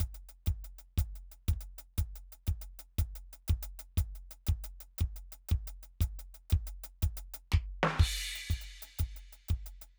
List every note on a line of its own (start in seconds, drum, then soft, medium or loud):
0.00 closed hi-hat loud
0.00 kick medium
0.14 closed hi-hat medium
0.29 closed hi-hat medium
0.46 closed hi-hat loud
0.46 kick medium
0.64 closed hi-hat medium
0.78 closed hi-hat medium
0.97 kick medium
0.97 closed hi-hat loud
1.15 closed hi-hat medium
1.31 closed hi-hat medium
1.48 closed hi-hat loud
1.48 kick medium
1.53 kick soft
1.61 closed hi-hat medium
1.78 closed hi-hat medium
1.98 kick medium
1.98 closed hi-hat loud
2.15 open hi-hat medium
2.32 closed hi-hat medium
2.47 closed hi-hat medium
2.47 kick medium
2.61 closed hi-hat medium
2.79 closed hi-hat medium
2.98 kick medium
2.98 closed hi-hat loud
3.15 closed hi-hat medium
3.33 closed hi-hat medium
3.48 closed hi-hat loud
3.48 kick medium
3.62 closed hi-hat loud
3.79 closed hi-hat loud
3.97 kick medium
3.97 closed hi-hat loud
4.15 closed hi-hat medium
4.31 closed hi-hat medium
4.47 closed hi-hat loud
4.47 kick medium
4.64 closed hi-hat loud
4.80 closed hi-hat medium
4.98 closed hi-hat loud
4.98 kick medium
5.16 closed hi-hat medium
5.32 closed hi-hat medium
5.49 closed hi-hat loud
5.49 kick medium
5.67 closed hi-hat medium
5.83 closed hi-hat medium
6.01 kick medium
6.01 closed hi-hat loud
6.19 open hi-hat medium
6.34 closed hi-hat medium
6.50 closed hi-hat loud
6.50 kick medium
6.67 closed hi-hat medium
6.84 open hi-hat loud
7.02 kick medium
7.02 closed hi-hat loud
7.17 closed hi-hat loud
7.34 closed hi-hat loud
7.52 kick medium
7.52 snare medium
7.83 snare loud
7.99 kick medium
7.99 crash loud
8.35 open hi-hat medium
8.50 open hi-hat medium
8.50 kick medium
8.61 open hi-hat medium
8.82 open hi-hat loud
8.99 closed hi-hat loud
8.99 kick medium
9.16 open hi-hat medium
9.32 closed hi-hat medium
9.48 closed hi-hat loud
9.48 kick medium
9.66 closed hi-hat medium
9.81 closed hi-hat medium